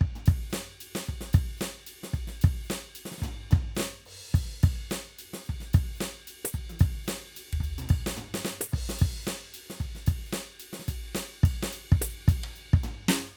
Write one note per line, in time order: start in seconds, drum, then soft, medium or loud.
0.01 kick loud
0.16 floor tom medium
0.26 kick loud
0.26 ride loud
0.50 snare loud
0.50 hi-hat pedal medium
0.81 ride loud
0.95 snare loud
1.06 kick medium
1.06 ride medium
1.21 snare medium
1.34 kick loud
1.34 ride loud
1.58 snare loud
1.58 hi-hat pedal medium
1.87 ride loud
2.04 snare medium
2.14 kick medium
2.14 ride soft
2.28 snare medium
2.42 kick loud
2.42 ride loud
2.64 hi-hat pedal soft
2.70 snare loud
2.95 ride loud
3.06 snare medium
3.12 snare medium
3.18 kick medium
3.18 snare medium
3.24 floor tom loud
3.51 kick loud
3.51 floor tom loud
3.75 snare loud
3.75 hi-hat pedal medium
3.80 snare loud
4.06 crash loud
4.35 kick loud
4.35 ride loud
4.63 kick loud
4.63 ride bell loud
4.90 snare loud
4.90 hi-hat pedal medium
5.19 ride loud
5.34 snare medium
5.46 kick medium
5.46 ride medium
5.61 snare medium
5.74 kick loud
5.74 ride loud
5.96 hi-hat pedal medium
6.01 snare loud
6.28 ride loud
6.45 high tom loud
6.54 kick medium
6.70 high tom medium
6.80 kick loud
6.80 ride loud
7.05 snare loud
7.05 hi-hat pedal medium
7.05 ride loud
7.37 ride loud
7.53 mid tom loud
7.61 kick medium
7.61 ride medium
7.79 mid tom medium
7.89 kick loud
7.89 ride bell loud
8.07 snare loud
8.13 hi-hat pedal medium
8.17 floor tom loud
8.34 snare loud
8.45 snare loud
8.61 high tom loud
8.72 kick medium
8.72 crash loud
8.89 snare loud
8.99 kick loud
8.99 ride loud
9.23 hi-hat pedal medium
9.27 snare loud
9.54 ride loud
9.70 snare medium
9.81 kick medium
9.81 ride soft
9.95 snare medium
10.07 kick loud
10.07 ride loud
10.27 hi-hat pedal medium
10.33 snare loud
10.60 ride loud
10.73 snare medium
10.80 snare medium
10.88 kick medium
10.88 ride loud
11.15 snare loud
11.15 ride loud
11.44 kick loud
11.44 ride bell loud
11.63 snare loud
11.73 ride loud
11.92 kick loud
12.02 high tom loud
12.02 ride loud
12.28 kick loud
12.28 ride loud
12.44 mid tom medium
12.56 ride medium
12.74 kick loud
12.84 floor tom loud
13.09 snare loud